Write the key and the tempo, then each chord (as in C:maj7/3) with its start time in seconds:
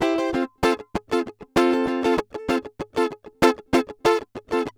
C major, 97 BPM
0.00 C:maj/3
0.33 F:maj/5